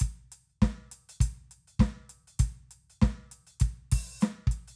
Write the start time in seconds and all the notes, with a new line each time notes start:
0.01 kick, closed hi-hat
0.32 closed hi-hat
0.49 closed hi-hat
0.62 kick, snare
0.92 closed hi-hat
1.09 closed hi-hat
1.21 kick, closed hi-hat
1.51 closed hi-hat
1.68 closed hi-hat
1.80 kick, snare
2.10 closed hi-hat
2.28 closed hi-hat
2.40 kick, closed hi-hat
2.71 closed hi-hat
2.90 closed hi-hat
3.02 kick, snare
3.32 closed hi-hat
3.47 closed hi-hat
3.60 kick, closed hi-hat
3.92 kick, open hi-hat
4.21 closed hi-hat, snare, hi-hat pedal
4.47 kick
4.51 closed hi-hat
4.68 closed hi-hat